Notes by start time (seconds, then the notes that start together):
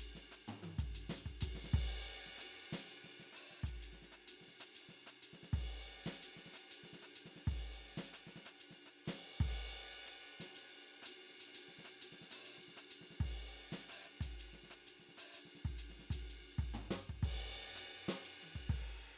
0.01 ride
0.16 snare
0.32 hi-hat pedal
0.49 floor tom
0.64 high tom
0.79 kick, ride
0.96 ride
1.10 snare
1.27 kick
1.42 kick, ride
1.56 snare
1.65 snare
1.74 kick, ride
2.27 snare
2.39 hi-hat pedal, ride
2.73 snare, ride
2.87 hi-hat pedal, ride
3.05 snare
3.21 snare
3.33 hi-hat pedal
3.37 ride
3.52 snare
3.64 kick, ride
3.83 ride
3.94 snare
4.03 snare
4.13 hi-hat pedal
4.29 ride
4.42 snare
4.49 snare
4.61 hi-hat pedal, ride
4.76 ride
4.81 hi-hat pedal
4.90 snare
5.07 hi-hat pedal
5.23 ride
5.28 hi-hat pedal
5.34 snare
5.44 snare
5.54 kick, ride
5.71 ride
6.07 snare
6.23 ride
6.37 snare
6.47 snare
6.54 hi-hat pedal, ride
6.72 ride
6.84 snare
6.94 snare
7.03 hi-hat pedal
7.16 ride
7.26 snare
7.37 snare
7.47 kick, ride
7.62 ride
7.98 snare
8.14 hi-hat pedal, ride
8.28 snare
8.37 snare
8.46 hi-hat pedal, ride
8.61 ride
8.71 snare
8.87 hi-hat pedal
9.07 snare, ride
9.41 kick, ride
9.90 snare
9.93 snare
9.97 snare
10.07 hi-hat pedal, ride
10.41 snare, ride
10.50 hi-hat pedal
10.56 ride
11.03 hi-hat pedal, ride
11.31 snare
11.41 ride
11.48 hi-hat pedal
11.55 ride
11.69 snare
11.79 snare
11.86 hi-hat pedal
12.02 ride
12.13 snare
12.22 snare
12.32 hi-hat pedal, ride
12.46 ride
12.59 snare
12.69 snare
12.78 hi-hat pedal
12.91 ride
13.02 snare
13.11 snare
13.20 kick, snare, ride
13.36 ride
13.73 snare
13.90 hi-hat pedal, ride
14.06 snare
14.21 kick, ride
14.30 hi-hat pedal
14.40 ride
14.54 snare
14.64 snare
14.71 hi-hat pedal
14.88 ride
15.00 snare
15.10 snare
15.18 hi-hat pedal, ride
15.35 ride
15.39 hi-hat pedal
15.46 snare
15.56 snare
15.66 kick
15.79 ride
15.91 snare
16.00 snare
16.11 kick, ride
16.31 ride
16.42 snare
16.59 kick
16.75 floor tom
16.91 snare
17.10 kick
17.24 kick, ride
17.64 snare
17.76 hi-hat pedal, ride
18.09 snare, ride
18.21 hi-hat pedal
18.26 ride
18.43 high tom
18.56 kick
18.70 kick, crash
19.02 snare